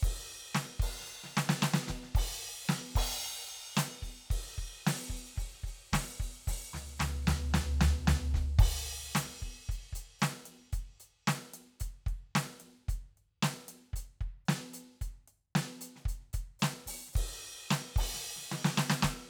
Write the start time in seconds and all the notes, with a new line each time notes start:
0.01 kick, hi-hat pedal, crash
0.55 snare
0.80 kick, crash
1.01 snare
1.06 hi-hat pedal
1.24 snare
1.37 snare
1.49 snare
1.61 snare, hi-hat pedal
1.74 snare
1.88 kick, snare
2.03 snare
2.15 kick, crash
2.65 hi-hat pedal
2.69 snare
2.96 kick, crash
3.21 hi-hat pedal
3.47 closed hi-hat
3.75 closed hi-hat, snare, hi-hat pedal
4.03 open hi-hat, kick
4.31 kick, crash
4.56 kick, open hi-hat
4.87 open hi-hat, snare
5.10 open hi-hat, kick
5.36 open hi-hat, kick, snare
5.64 open hi-hat, kick
5.93 open hi-hat, kick, snare
6.16 snare
6.20 open hi-hat, kick
6.48 open hi-hat, kick, snare
6.74 snare, floor tom
7.00 snare, floor tom
7.27 snare, floor tom
7.54 snare, floor tom
7.81 snare, floor tom
8.08 snare, floor tom
8.34 kick, snare
8.59 kick, crash
8.66 hi-hat pedal
8.82 closed hi-hat
9.15 closed hi-hat, snare
9.41 closed hi-hat, kick
9.69 closed hi-hat, kick
9.93 closed hi-hat, kick
10.20 snare, hi-hat pedal
10.46 closed hi-hat
10.73 closed hi-hat, kick
11.00 closed hi-hat
11.28 snare
11.54 closed hi-hat
11.80 closed hi-hat, kick
12.07 kick, closed hi-hat
12.35 snare
12.60 closed hi-hat
12.89 closed hi-hat, kick
13.18 closed hi-hat
13.43 snare
13.69 closed hi-hat
13.94 closed hi-hat, kick
14.21 kick, closed hi-hat
14.46 snare, hi-hat pedal
14.74 closed hi-hat
15.02 closed hi-hat, kick
15.28 closed hi-hat
15.55 snare
15.81 closed hi-hat
15.96 snare
16.06 closed hi-hat, kick
16.21 snare
16.33 open hi-hat, kick
16.60 snare, hi-hat pedal
16.87 open hi-hat, kick
17.07 snare
17.14 kick, hi-hat pedal, crash
17.39 closed hi-hat
17.71 snare
17.96 kick, crash
18.15 snare
18.20 hi-hat pedal
18.24 closed hi-hat
18.36 snare
18.52 snare
18.65 snare
18.77 snare, hi-hat pedal
18.90 snare
19.03 kick, snare